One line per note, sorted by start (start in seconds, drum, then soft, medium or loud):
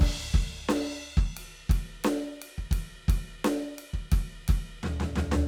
0.01 kick loud
0.01 crash loud
0.01 ride loud
0.35 kick loud
0.35 snare soft
0.69 snare loud
0.69 crash loud
1.18 kick loud
1.18 snare soft
1.37 ride loud
1.70 kick loud
1.70 ride loud
2.05 snare loud
2.05 ride loud
2.42 ride loud
2.59 kick medium
2.72 kick loud
2.72 ride loud
3.09 kick loud
3.09 ride loud
3.45 snare loud
3.45 ride loud
3.79 ride loud
3.94 kick medium
4.12 kick loud
4.12 ride loud
4.49 kick loud
4.49 ride loud
4.84 snare medium
4.84 floor tom loud
5.01 snare loud
5.01 floor tom loud
5.16 snare loud
5.16 floor tom loud
5.24 hi-hat pedal soft
5.32 snare loud
5.32 floor tom loud